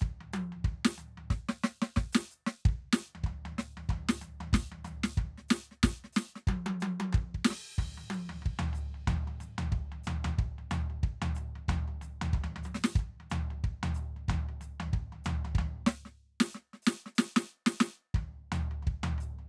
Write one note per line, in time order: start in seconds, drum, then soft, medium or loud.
0.01 kick medium
0.01 floor tom medium
0.21 floor tom soft
0.33 hi-hat pedal medium
0.33 high tom loud
0.52 floor tom soft
0.64 kick medium
0.64 floor tom medium
0.85 snare loud
0.97 floor tom soft
0.97 hi-hat pedal medium
1.17 floor tom soft
1.30 kick medium
1.30 snare medium
1.49 snare medium
1.63 snare loud
1.63 hi-hat pedal medium
1.82 snare loud
1.96 kick medium
1.96 snare medium
2.13 closed hi-hat medium
2.13 snare loud
2.30 hi-hat pedal medium
2.47 snare medium
2.65 kick loud
2.93 snare loud
2.97 hi-hat pedal medium
3.15 floor tom medium
3.24 kick medium
3.24 floor tom medium
3.45 floor tom medium
3.58 snare medium
3.58 hi-hat pedal medium
3.77 floor tom medium
3.89 kick medium
3.89 floor tom medium
4.09 snare loud
4.21 floor tom medium
4.21 hi-hat pedal medium
4.40 floor tom medium
4.53 kick medium
4.53 snare loud
4.72 floor tom medium
4.84 floor tom medium
4.84 hi-hat pedal medium
5.03 snare medium
5.17 kick medium
5.17 floor tom medium
5.38 snare soft
5.49 snare loud
5.49 hi-hat pedal medium
5.71 snare soft
5.83 kick medium
5.83 snare loud
6.04 snare soft
6.13 snare loud
6.13 hi-hat pedal medium
6.36 snare soft
6.47 kick medium
6.47 high tom loud
6.66 high tom loud
6.80 hi-hat pedal medium
6.80 high tom loud
7.00 high tom loud
7.13 kick loud
7.13 high tom loud
7.34 kick medium
7.45 snare loud
7.45 hi-hat pedal medium
7.45 crash medium
7.50 snare medium
7.78 kick medium
7.78 floor tom medium
7.97 floor tom soft
8.10 hi-hat pedal medium
8.10 high tom loud
8.29 floor tom medium
8.42 kick medium
8.42 floor tom soft
8.59 floor tom loud
8.73 floor tom soft
8.73 hi-hat pedal medium
8.94 floor tom soft
9.07 kick medium
9.07 floor tom loud
9.27 floor tom soft
9.40 floor tom soft
9.40 hi-hat pedal medium
9.58 floor tom loud
9.72 kick medium
9.72 floor tom soft
9.92 floor tom soft
10.04 floor tom loud
10.04 hi-hat pedal medium
10.24 floor tom loud
10.39 kick medium
10.39 floor tom soft
10.58 floor tom soft
10.71 floor tom loud
10.71 hi-hat pedal medium
10.90 floor tom soft
11.03 kick medium
11.03 floor tom soft
11.22 floor tom loud
11.35 floor tom soft
11.35 hi-hat pedal medium
11.55 floor tom soft
11.68 kick medium
11.68 floor tom loud
11.88 floor tom soft
12.01 floor tom soft
12.01 hi-hat pedal medium
12.21 floor tom loud
12.33 kick medium
12.33 floor tom medium
12.44 floor tom medium
12.56 floor tom medium
12.63 hi-hat pedal medium
12.63 high tom medium
12.75 snare medium
12.84 snare loud
12.95 kick loud
12.95 floor tom soft
13.20 floor tom soft
13.30 floor tom loud
13.30 hi-hat pedal medium
13.50 floor tom soft
13.64 kick medium
13.64 floor tom soft
13.83 floor tom loud
13.94 floor tom soft
13.94 hi-hat pedal medium
14.16 floor tom soft
14.28 kick medium
14.28 floor tom loud
14.49 floor tom soft
14.61 floor tom soft
14.61 hi-hat pedal medium
14.80 floor tom loud
14.93 kick medium
14.93 floor tom soft
15.12 floor tom soft
15.24 floor tom loud
15.24 hi-hat pedal medium
15.45 floor tom medium
15.55 kick medium
15.55 floor tom loud
15.86 snare loud
15.86 hi-hat pedal medium
16.05 snare soft
16.40 snare loud
16.50 hi-hat pedal medium
16.55 snare soft
16.73 snare soft
16.82 hi-hat pedal medium
16.87 snare loud
17.06 snare soft
17.15 snare loud
17.15 hi-hat pedal medium
17.36 snare loud
17.46 hi-hat pedal soft
17.66 snare loud
17.78 snare loud
17.78 hi-hat pedal medium
18.14 kick medium
18.14 floor tom medium
18.52 floor tom loud
18.52 hi-hat pedal medium
18.71 floor tom soft
18.82 floor tom soft
18.87 kick medium
19.03 floor tom loud
19.18 floor tom soft
19.18 hi-hat pedal medium
19.39 floor tom soft